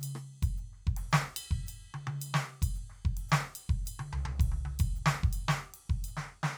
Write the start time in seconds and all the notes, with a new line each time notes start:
0.01 hi-hat pedal, ride bell
0.15 cross-stick
0.43 kick, ride bell
0.57 hi-hat pedal
0.73 snare
0.87 kick
0.97 snare, ride, floor tom
1.11 snare, hi-hat pedal
1.37 ride bell
1.51 kick
1.67 hi-hat pedal, ride bell
1.94 high tom
2.07 high tom
2.21 hi-hat pedal, ride bell
2.34 snare
2.62 kick, ride bell
2.75 hi-hat pedal
2.90 snare
3.05 kick
3.17 ride
3.29 snare, hi-hat pedal
3.55 ride bell
3.69 kick
3.86 hi-hat pedal, ride bell
4.00 high tom
4.13 floor tom
4.25 floor tom
4.40 kick, hi-hat pedal, ride
4.52 high tom
4.65 high tom
4.79 kick, ride bell
4.96 hi-hat pedal
5.06 snare
5.24 kick
5.33 ride bell
5.49 snare, hi-hat pedal
5.74 ride
5.90 kick
6.04 hi-hat pedal, ride bell
6.17 snare
6.43 snare